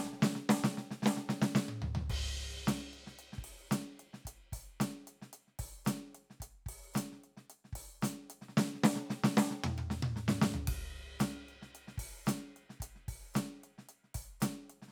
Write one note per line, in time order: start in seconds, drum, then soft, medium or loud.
0.05 snare soft
0.12 snare soft
0.19 snare soft
0.22 snare loud
0.35 snare soft
0.49 snare loud
0.49 hi-hat pedal medium
0.64 snare loud
0.77 snare soft
0.91 snare soft
1.02 snare medium
1.06 snare loud
1.17 snare soft
1.29 snare medium
1.42 snare loud
1.55 snare loud
1.68 high tom medium
1.82 floor tom medium
1.95 floor tom medium
2.10 kick soft
2.10 ride loud
2.67 snare loud
2.67 closed hi-hat medium
2.93 closed hi-hat soft
3.06 snare soft
3.19 closed hi-hat medium
3.32 snare soft
3.38 kick soft
3.44 open hi-hat medium
3.71 snare medium
3.71 closed hi-hat medium
3.71 hi-hat pedal medium
3.99 closed hi-hat soft
4.13 snare soft
4.25 kick soft
4.25 closed hi-hat medium
4.52 kick soft
4.52 open hi-hat medium
4.80 snare medium
4.80 closed hi-hat medium
4.80 hi-hat pedal medium
5.07 closed hi-hat medium
5.22 snare soft
5.33 closed hi-hat medium
5.47 snare soft
5.59 kick soft
5.59 open hi-hat medium
5.85 snare medium
5.85 closed hi-hat medium
5.85 hi-hat pedal medium
6.15 closed hi-hat soft
6.30 snare soft
6.40 kick soft
6.40 closed hi-hat medium
6.66 kick soft
6.66 open hi-hat medium
6.94 snare medium
6.94 closed hi-hat loud
6.94 hi-hat pedal medium
7.12 snare soft
7.24 closed hi-hat soft
7.37 snare soft
7.50 closed hi-hat medium
7.64 snare soft
7.73 kick soft
7.73 open hi-hat medium
8.02 closed hi-hat loud
8.02 snare medium
8.02 hi-hat pedal medium
8.20 snare soft
8.30 closed hi-hat medium
8.41 snare soft
8.48 snare soft
8.57 snare loud
8.67 snare soft
8.74 snare soft
8.83 snare loud
8.95 snare soft
9.10 snare medium
9.24 snare loud
9.37 snare loud
9.50 snare soft
9.64 mid tom loud
9.78 mid tom medium
9.90 snare medium
10.02 high tom loud
10.16 snare soft
10.28 snare loud
10.41 snare loud
10.54 floor tom medium
10.67 kick medium
10.67 ride loud
11.19 snare medium
11.19 closed hi-hat medium
11.19 hi-hat pedal medium
11.48 closed hi-hat soft
11.62 snare soft
11.75 closed hi-hat medium
11.87 snare soft
11.98 kick soft
11.98 open hi-hat medium
12.26 snare medium
12.26 closed hi-hat medium
12.26 hi-hat pedal medium
12.56 closed hi-hat soft
12.69 snare soft
12.80 kick soft
12.80 closed hi-hat medium
12.95 snare soft
13.08 kick soft
13.08 open hi-hat medium
13.34 snare medium
13.34 closed hi-hat medium
13.34 hi-hat pedal medium
13.63 closed hi-hat soft
13.78 snare soft
13.89 closed hi-hat medium
14.03 snare soft
14.14 kick soft
14.14 open hi-hat medium
14.40 snare medium
14.40 closed hi-hat loud
14.40 hi-hat pedal medium
14.70 closed hi-hat soft
14.82 snare soft
14.87 snare soft